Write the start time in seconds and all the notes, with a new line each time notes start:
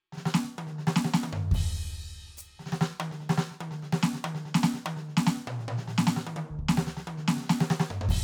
0.13 snare
0.18 snare
0.26 snare
0.35 snare
0.59 high tom
0.67 snare
0.79 snare
0.88 snare
0.96 snare
1.05 snare
1.14 snare
1.24 high tom
1.33 floor tom
1.52 kick, crash
2.38 hi-hat pedal
2.60 snare
2.66 snare
2.73 snare
2.82 snare
3.00 high tom
3.12 snare
3.21 snare
3.30 snare
3.38 snare
3.52 snare
3.61 high tom
3.71 snare
3.83 snare
3.93 snare
4.03 snare
4.15 snare
4.25 high tom
4.35 snare
4.46 snare
4.55 snare
4.64 snare
4.74 snare
4.86 high tom
4.97 snare
5.09 snare
5.17 snare
5.27 snare
5.48 mid tom
5.60 snare
5.69 mid tom
5.78 snare
5.88 snare
5.98 snare
6.07 snare
6.17 snare
6.27 high tom
6.37 high tom
6.51 kick
6.59 kick
6.69 snare
6.78 snare
6.87 snare
7.08 high tom
7.18 snare
7.28 snare
7.37 snare
7.41 snare
7.44 snare
7.50 snare
7.61 snare
7.67 snare, hi-hat pedal
7.80 snare
7.91 floor tom
8.02 floor tom
8.09 kick, crash